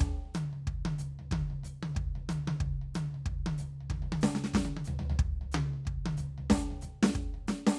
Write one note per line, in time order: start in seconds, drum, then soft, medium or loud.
0.01 kick loud
0.01 floor tom medium
0.26 floor tom soft
0.35 hi-hat pedal medium
0.35 high tom loud
0.53 floor tom soft
0.67 kick medium
0.67 floor tom soft
0.85 high tom loud
0.99 floor tom soft
0.99 hi-hat pedal medium
1.19 floor tom soft
1.32 kick medium
1.32 high tom loud
1.50 floor tom soft
1.64 floor tom soft
1.64 hi-hat pedal medium
1.83 high tom loud
1.95 kick medium
1.95 floor tom medium
2.16 floor tom soft
2.29 hi-hat pedal medium
2.29 high tom loud
2.48 high tom loud
2.61 kick medium
2.61 floor tom medium
2.82 floor tom soft
2.95 hi-hat pedal medium
2.95 high tom loud
3.15 floor tom soft
3.26 kick medium
3.26 floor tom soft
3.46 high tom loud
3.58 floor tom soft
3.58 hi-hat pedal medium
3.81 floor tom soft
3.90 kick medium
3.90 high tom medium
4.02 floor tom medium
4.12 high tom loud
4.21 snare loud
4.21 hi-hat pedal medium
4.35 snare medium
4.44 snare medium
4.54 kick medium
4.54 snare loud
4.65 high tom medium
4.77 high tom medium
4.85 floor tom medium
4.85 hi-hat pedal medium
4.99 floor tom medium
5.10 floor tom medium
5.19 kick loud
5.41 floor tom soft
5.52 hi-hat pedal medium
5.52 high tom loud
5.74 floor tom soft
5.86 kick medium
5.86 floor tom soft
6.06 high tom loud
6.17 floor tom medium
6.17 hi-hat pedal medium
6.38 floor tom medium
6.50 kick medium
6.50 snare loud
6.71 floor tom medium
6.82 floor tom soft
6.82 hi-hat pedal medium
7.03 snare loud
7.15 kick medium
7.15 floor tom soft
7.34 floor tom soft
7.48 kick soft
7.48 snare medium
7.48 hi-hat pedal medium
7.67 snare loud